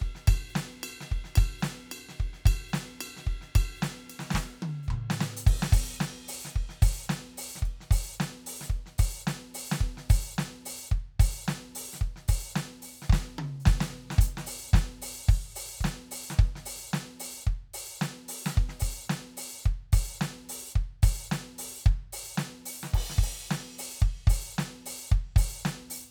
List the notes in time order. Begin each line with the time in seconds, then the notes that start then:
0.02 kick
0.16 snare
0.28 kick, ride bell
0.50 hi-hat pedal
0.56 snare
0.84 ride bell
1.01 snare
1.12 kick
1.25 snare
1.36 kick, ride bell
1.60 snare, hi-hat pedal
1.92 ride bell
2.10 snare
2.21 kick
2.34 snare
2.46 kick, ride bell
2.69 hi-hat pedal
2.74 snare
3.02 ride bell
3.17 snare
3.28 kick
3.42 snare
3.56 kick, ride bell
3.77 hi-hat pedal
3.83 snare
4.11 ride bell
4.20 snare
4.31 kick, snare
4.36 snare
4.63 high tom
4.84 hi-hat pedal
4.89 kick, mid tom
5.11 snare
5.21 snare
5.38 closed hi-hat
5.47 kick, crash
5.63 snare
5.73 open hi-hat, kick
5.97 hi-hat pedal
6.01 snare
6.29 open hi-hat
6.46 snare
6.51 closed hi-hat, hi-hat pedal
6.57 kick
6.70 snare
6.83 open hi-hat, kick
7.06 hi-hat pedal
7.10 snare
7.38 open hi-hat
7.56 snare, hi-hat pedal
7.63 kick, closed hi-hat
7.81 snare
7.92 open hi-hat, kick
8.16 hi-hat pedal
8.21 snare
8.47 open hi-hat
8.62 snare
8.68 kick, hi-hat pedal
8.73 closed hi-hat
8.87 snare
8.99 open hi-hat, kick
9.23 hi-hat pedal
9.28 snare
9.55 open hi-hat
9.72 snare
9.78 kick, hi-hat pedal
9.98 snare
10.10 open hi-hat, kick
10.34 hi-hat pedal
10.39 snare
10.66 open hi-hat
10.88 kick, closed hi-hat, hi-hat pedal
11.20 open hi-hat, kick
11.46 snare, hi-hat pedal
11.76 open hi-hat
11.94 snare
11.99 kick, hi-hat pedal
12.17 snare
12.29 open hi-hat, kick
12.53 snare, hi-hat pedal
12.83 open hi-hat
13.03 snare, hi-hat pedal
13.10 kick, snare
13.39 high tom
13.61 hi-hat pedal
13.66 kick, snare
13.81 snare
14.11 snare
14.19 closed hi-hat, kick
14.38 snare
14.47 open hi-hat
14.71 kick, hi-hat pedal
14.75 snare
15.03 open hi-hat
15.29 kick
15.56 open hi-hat
15.81 kick, snare, hi-hat pedal
16.12 open hi-hat
16.31 snare, hi-hat pedal
16.40 kick
16.56 snare
16.66 open hi-hat
16.91 snare, hi-hat pedal
17.21 open hi-hat
17.44 kick, hi-hat pedal
17.74 open hi-hat
18.00 snare, hi-hat pedal
18.29 open hi-hat
18.47 snare
18.53 hi-hat pedal
18.58 kick
18.70 snare
18.81 open hi-hat, kick
19.06 hi-hat pedal
19.10 snare
19.38 open hi-hat
19.64 kick, hi-hat pedal
19.93 open hi-hat, kick
20.18 snare, hi-hat pedal
20.50 open hi-hat
20.72 kick, hi-hat pedal
21.03 open hi-hat, kick
21.28 hi-hat pedal
21.32 snare
21.59 open hi-hat
21.84 kick, hi-hat pedal
22.14 open hi-hat
22.36 snare, hi-hat pedal
22.66 open hi-hat
22.84 snare
22.89 hi-hat pedal
22.94 kick, crash
23.11 snare
23.19 kick
23.24 open hi-hat
23.48 snare, hi-hat pedal
23.79 open hi-hat
24.01 kick, hi-hat pedal
24.28 open hi-hat, kick
24.55 snare, hi-hat pedal
24.87 open hi-hat
25.10 kick, hi-hat pedal
25.37 open hi-hat, kick
25.62 hi-hat pedal
25.66 snare
25.91 open hi-hat